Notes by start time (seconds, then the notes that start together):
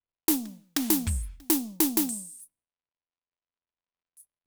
0.28 snare
0.45 snare
0.76 snare
0.90 snare
1.07 open hi-hat, kick
1.21 hi-hat pedal
1.40 snare
1.50 snare
1.70 snare
1.80 snare
1.97 snare
2.09 open hi-hat
2.40 hi-hat pedal
4.17 hi-hat pedal